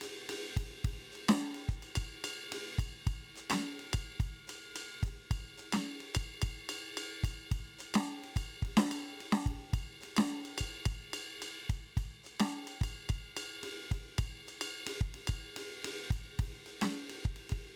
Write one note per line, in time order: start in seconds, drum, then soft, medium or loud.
0.01 hi-hat pedal medium
0.01 ride loud
0.29 ride loud
0.56 kick soft
0.56 hi-hat pedal medium
0.56 ride loud
0.84 kick soft
0.84 ride loud
0.92 kick soft
1.12 hi-hat pedal medium
1.12 ride medium
1.28 snare loud
1.28 ride bell loud
1.55 ride medium
1.69 kick soft
1.69 hi-hat pedal medium
1.79 snare soft
1.79 ride bell medium
1.95 kick soft
1.95 ride bell loud
2.24 hi-hat pedal medium
2.24 ride bell loud
2.52 ride loud
2.78 kick soft
2.78 hi-hat pedal medium
2.78 ride bell loud
3.07 kick soft
3.07 ride bell loud
3.36 hi-hat pedal medium
3.36 ride medium
3.50 snare loud
3.50 ride bell loud
3.79 ride medium
3.93 kick soft
3.93 hi-hat pedal medium
3.93 ride bell loud
4.20 kick soft
4.20 ride bell medium
4.26 kick soft
4.47 hi-hat pedal medium
4.47 ride bell medium
4.76 ride bell medium
5.01 kick soft
5.01 snare soft
5.01 hi-hat pedal medium
5.01 ride loud
5.31 kick soft
5.31 ride bell loud
5.39 kick soft
5.57 hi-hat pedal medium
5.57 ride medium
5.72 snare loud
5.72 ride bell loud
6.00 ride medium
6.14 kick soft
6.14 hi-hat pedal medium
6.14 ride bell loud
6.42 kick soft
6.42 ride bell loud
6.69 hi-hat pedal medium
6.69 ride bell loud
6.97 ride bell loud
7.23 kick soft
7.23 hi-hat pedal medium
7.23 ride bell loud
7.51 kick soft
7.51 ride bell loud
7.60 kick soft
7.78 hi-hat pedal medium
7.78 ride bell medium
7.94 snare loud
7.94 ride bell loud
8.24 ride medium
8.36 kick soft
8.36 hi-hat pedal medium
8.36 ride bell loud
8.62 kick soft
8.62 ride medium
8.77 snare loud
8.88 hi-hat pedal soft
8.88 ride bell loud
9.20 ride medium
9.32 snare loud
9.46 kick soft
9.46 hi-hat pedal soft
9.46 ride loud
9.51 kick soft
9.54 kick soft
9.73 kick soft
9.73 ride bell loud
9.79 kick soft
9.82 kick soft
10.01 hi-hat pedal medium
10.01 ride medium
10.17 snare loud
10.17 ride bell loud
10.45 ride bell medium
10.58 kick soft
10.58 hi-hat pedal medium
10.58 ride bell loud
10.86 kick soft
10.86 ride bell loud
10.92 kick soft
11.13 hi-hat pedal medium
11.13 ride bell loud
11.42 ride bell medium
11.69 kick soft
11.69 hi-hat pedal soft
11.69 ride bell medium
11.97 kick soft
11.97 ride bell medium
12.05 kick soft
12.23 hi-hat pedal medium
12.23 ride bell medium
12.40 snare loud
12.40 ride bell loud
12.67 ride bell medium
12.81 kick soft
12.81 hi-hat pedal medium
12.81 ride bell loud
12.87 kick soft
13.09 kick soft
13.09 ride bell loud
13.17 kick soft
13.37 hi-hat pedal medium
13.37 ride bell loud
13.63 ride loud
13.91 kick soft
13.91 hi-hat pedal medium
13.91 ride loud
14.18 kick soft
14.18 ride bell loud
14.24 kick soft
14.47 hi-hat pedal soft
14.47 ride bell medium
14.61 ride bell loud
14.87 ride loud
15.01 kick soft
15.01 hi-hat pedal medium
15.14 ride medium
15.27 kick soft
15.27 ride bell loud
15.56 hi-hat pedal soft
15.56 ride loud
15.84 ride loud
16.10 kick soft
16.10 hi-hat pedal soft
16.10 ride bell medium
16.16 kick soft
16.39 kick soft
16.39 ride loud
16.47 kick soft
16.66 hi-hat pedal medium
16.66 ride medium
16.81 snare loud
16.81 ride loud
17.10 ride medium
17.24 kick soft
17.24 hi-hat pedal medium
17.36 ride medium
17.49 kick soft
17.49 ride loud